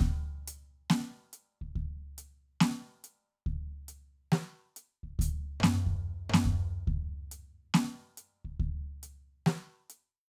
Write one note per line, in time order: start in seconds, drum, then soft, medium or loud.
0.01 kick loud
0.48 closed hi-hat loud
0.90 snare loud
1.33 closed hi-hat medium
1.62 kick soft
1.76 kick medium
1.76 snare soft
1.76 crash soft
1.76 ride soft
2.18 closed hi-hat medium
2.61 snare loud
3.04 closed hi-hat medium
3.46 kick medium
3.46 snare soft
3.46 crash soft
3.46 ride soft
3.89 closed hi-hat medium
4.32 snare loud
4.77 closed hi-hat medium
5.04 kick soft
5.19 closed hi-hat loud
5.19 kick loud
5.19 snare soft
5.60 snare loud
5.60 floor tom loud
5.87 kick medium
6.30 floor tom loud
6.34 snare loud
6.46 kick medium
6.88 kick loud
6.88 snare soft
6.88 crash soft
6.88 ride soft
7.32 closed hi-hat medium
7.74 snare loud
8.18 closed hi-hat medium
8.45 kick soft
8.60 kick medium
9.03 closed hi-hat medium
9.46 snare loud
9.90 closed hi-hat medium